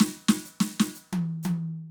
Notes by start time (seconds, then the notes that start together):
0.01 snare
0.20 hi-hat pedal
0.29 snare
0.46 hi-hat pedal
0.61 snare
0.80 snare
0.95 hi-hat pedal
1.13 high tom
1.43 hi-hat pedal, high tom